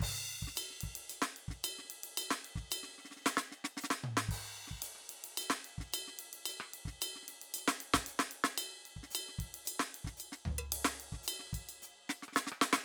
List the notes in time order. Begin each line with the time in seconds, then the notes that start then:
0.01 kick, hi-hat pedal, crash
0.14 kick
0.43 kick
0.48 snare
0.56 hi-hat pedal, ride bell
0.71 snare
0.76 snare
0.81 kick, ride
0.94 snare, ride
1.10 hi-hat pedal, ride bell
1.22 snare
1.37 ride
1.49 kick, snare
1.64 hi-hat pedal, ride bell
1.79 snare
1.85 snare
1.91 ride
2.04 ride
2.18 hi-hat pedal, ride bell
2.31 snare
2.45 ride
2.56 kick, snare
2.62 kick
2.71 hi-hat pedal, ride bell
2.84 snare
2.89 snare
2.94 snare
2.99 snare
3.05 snare
3.10 snare
3.17 snare
3.22 snare
3.27 snare, hi-hat pedal
3.38 snare
3.52 snare
3.65 snare
3.78 snare, hi-hat pedal
3.84 snare
3.91 snare
4.04 mid tom
4.18 snare
4.29 kick, crash
4.33 hi-hat pedal
4.68 kick, snare
4.83 hi-hat pedal, ride
4.96 cross-stick
5.01 snare
5.10 ride
5.14 snare
5.25 ride
5.38 hi-hat pedal, ride bell
5.51 snare
5.65 ride
5.79 kick, snare
5.93 hi-hat pedal, ride bell
6.08 snare
6.20 ride
6.34 ride
6.46 hi-hat pedal, ride bell
6.61 cross-stick
6.74 ride
6.86 kick, snare
7.02 hi-hat pedal, ride bell
7.16 snare
7.23 snare
7.29 snare, ride
7.33 snare
7.36 snare
7.42 ride
7.55 hi-hat pedal, ride bell
7.68 snare
7.81 ride
7.94 kick, snare
8.07 hi-hat pedal, ride
8.20 snare
8.32 ride
8.45 snare
8.58 hi-hat pedal, ride bell
8.86 ride
8.97 kick
9.04 snare
9.11 hi-hat pedal
9.16 ride bell
9.29 snare
9.39 kick, ride
9.46 kick
9.53 snare, ride
9.56 snare
9.66 hi-hat pedal, ride bell
9.80 snare
9.95 ride
10.05 kick, snare
10.18 hi-hat pedal, ride bell
10.33 snare
10.46 kick, floor tom
10.59 percussion
10.73 hi-hat pedal, ride
10.85 snare
11.01 ride
11.13 kick, snare
11.24 hi-hat pedal
11.29 ride bell
11.40 snare
11.47 cross-stick
11.53 kick, ride bell
11.69 ride bell
11.83 hi-hat pedal
12.10 snare
12.23 snare
12.29 cross-stick
12.36 snare, hi-hat pedal
12.47 snare
12.52 cross-stick
12.62 snare
12.73 snare
12.79 cross-stick